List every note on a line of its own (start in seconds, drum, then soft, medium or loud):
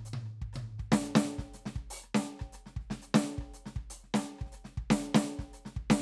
0.01 cross-stick soft
0.06 hi-hat pedal medium
0.14 high tom medium
0.26 cross-stick soft
0.42 kick soft
0.53 cross-stick soft
0.53 hi-hat pedal medium
0.53 high tom medium
0.79 kick soft
0.79 snare soft
0.92 snare loud
1.04 cross-stick soft
1.04 hi-hat pedal medium
1.16 snare loud
1.29 cross-stick soft
1.39 kick soft
1.39 snare soft
1.46 snare soft
1.54 cross-stick soft
1.54 snare soft
1.54 hi-hat pedal medium
1.66 snare medium
1.76 kick soft
1.76 cross-stick soft
1.91 open hi-hat loud
1.99 hi-hat pedal soft
2.04 cross-stick soft
2.15 snare loud
2.21 cross-stick soft
2.28 snare soft
2.40 kick soft
2.40 cross-stick medium
2.53 cross-stick soft
2.53 snare soft
2.53 hi-hat pedal medium
2.66 snare soft
2.77 kick soft
2.77 snare soft
2.91 snare medium
3.00 snare soft
3.00 hi-hat pedal medium
3.03 cross-stick soft
3.03 snare soft
3.15 cross-stick medium
3.15 snare loud
3.30 snare soft
3.38 kick soft
3.38 cross-stick soft
3.54 cross-stick soft
3.54 hi-hat pedal medium
3.66 snare soft
3.76 kick soft
3.76 cross-stick soft
3.91 open hi-hat loud
4.00 hi-hat pedal soft
4.04 snare soft
4.14 snare loud
4.19 cross-stick medium
4.29 cross-stick soft
4.39 kick soft
4.39 cross-stick soft
4.46 snare soft
4.53 cross-stick soft
4.53 snare soft
4.53 closed hi-hat soft
4.53 hi-hat pedal medium
4.65 snare soft
4.78 kick soft
4.78 cross-stick soft
4.91 snare loud
5.01 snare soft
5.03 snare soft
5.03 hi-hat pedal medium
5.15 snare loud
5.29 snare soft
5.39 kick soft
5.39 snare soft
5.54 cross-stick soft
5.54 closed hi-hat soft
5.54 hi-hat pedal medium
5.66 snare soft
5.77 kick soft
5.77 cross-stick soft
5.90 snare loud